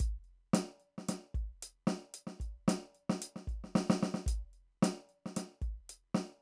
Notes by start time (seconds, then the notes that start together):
0.01 closed hi-hat, kick
0.24 closed hi-hat
0.53 closed hi-hat, snare
0.80 closed hi-hat
0.98 snare
1.08 closed hi-hat, snare
1.34 kick, closed hi-hat
1.62 closed hi-hat
1.87 snare
2.14 closed hi-hat
2.27 snare
2.40 kick, closed hi-hat
2.68 closed hi-hat, snare
2.94 closed hi-hat
3.09 snare
3.22 closed hi-hat
3.36 snare
3.47 kick, closed hi-hat
3.64 snare
3.75 snare
3.90 snare
4.03 snare
4.14 snare
4.26 closed hi-hat, kick
4.53 closed hi-hat
4.82 closed hi-hat, snare
5.09 closed hi-hat
5.26 snare
5.36 closed hi-hat, snare
5.61 kick, closed hi-hat
5.89 closed hi-hat
6.14 snare